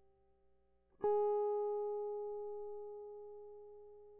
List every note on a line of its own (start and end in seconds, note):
1.04 4.20 G#4